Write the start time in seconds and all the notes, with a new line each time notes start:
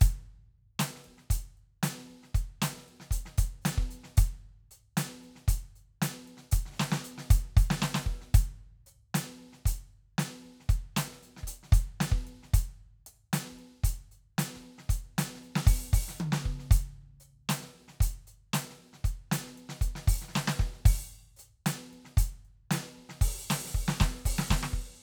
0.01 closed hi-hat, kick
0.26 closed hi-hat
0.79 closed hi-hat, snare
0.95 snare
0.98 snare
1.04 kick, closed hi-hat
1.18 snare
1.30 closed hi-hat, kick
1.57 closed hi-hat
1.83 closed hi-hat, snare
1.98 snare
2.10 kick, closed hi-hat
2.23 snare
2.35 closed hi-hat, kick
2.62 closed hi-hat, snare
2.77 snare
2.88 closed hi-hat
3.00 snare
3.10 closed hi-hat, kick, snare
3.26 snare
3.38 closed hi-hat, kick
3.62 closed hi-hat, snare, hi-hat pedal
3.78 kick, snare
3.91 closed hi-hat
4.04 snare
4.17 closed hi-hat, kick
4.71 closed hi-hat
4.97 closed hi-hat, snare
5.11 snare
5.22 closed hi-hat, kick
5.36 snare
5.48 closed hi-hat, kick
5.76 closed hi-hat
6.02 closed hi-hat, snare
6.27 closed hi-hat
6.37 snare
6.52 closed hi-hat, kick
6.66 snare
6.70 snare
6.73 snare, hi-hat pedal
6.80 snare
6.92 snare
7.04 closed hi-hat
7.18 snare
7.30 closed hi-hat, kick
7.41 cross-stick
7.57 open hi-hat, kick
7.70 snare
7.78 snare, hi-hat pedal
7.94 snare
8.06 kick, snare
8.21 snare
8.34 closed hi-hat, kick
8.86 hi-hat pedal
9.14 closed hi-hat, snare
9.53 snare
9.66 closed hi-hat, kick
9.93 closed hi-hat
10.18 closed hi-hat, snare
10.44 kick, closed hi-hat
10.60 snare
10.69 closed hi-hat, kick
10.96 closed hi-hat, snare
11.12 snare
11.23 closed hi-hat
11.37 snare
11.43 kick
11.47 closed hi-hat
11.63 snare
11.72 closed hi-hat, kick
12.00 closed hi-hat, snare
12.12 kick, snare
12.27 closed hi-hat
12.43 snare
12.54 closed hi-hat, kick
13.06 closed hi-hat
13.33 closed hi-hat, snare
13.45 snare
13.50 kick, snare
13.59 closed hi-hat
13.84 closed hi-hat, kick
14.11 closed hi-hat
14.38 closed hi-hat, snare
14.54 kick, snare
14.57 snare
14.78 snare
14.89 closed hi-hat, kick
15.18 closed hi-hat, snare
15.35 snare
15.43 closed hi-hat
15.56 snare
15.67 open hi-hat, kick
15.93 open hi-hat, kick
16.08 snare
16.12 snare
16.17 snare, hi-hat pedal, high tom
16.32 snare
16.45 kick
16.59 snare
16.71 open hi-hat, kick
17.20 hi-hat pedal
17.49 closed hi-hat, snare
17.61 snare
17.65 snare
17.88 snare
18.00 closed hi-hat, kick
18.27 closed hi-hat
18.53 closed hi-hat, snare
18.70 snare
18.93 snare
19.04 closed hi-hat, kick
19.32 closed hi-hat, snare
19.46 snare
19.57 closed hi-hat
19.69 snare
19.81 closed hi-hat, kick
19.95 snare
20.07 open hi-hat, kick
20.22 snare
20.28 snare
20.33 snare, hi-hat pedal
20.35 snare
20.47 snare
20.59 kick, snare
20.73 snare
20.85 open hi-hat, kick
21.36 closed hi-hat, hi-hat pedal
21.66 closed hi-hat, snare
21.84 snare
21.92 kick, closed hi-hat
22.05 snare
22.17 closed hi-hat, kick
22.45 closed hi-hat
22.71 closed hi-hat, snare
22.74 snare
22.87 snare
22.97 kick
23.09 snare
23.21 open hi-hat, kick
23.50 open hi-hat, snare
23.65 snare
23.69 snare
23.74 open hi-hat, kick, snare
23.88 snare
24.00 kick, snare
24.12 cross-stick
24.16 cross-stick
24.25 open hi-hat, kick
24.38 snare
24.50 kick, snare
24.63 snare
24.73 kick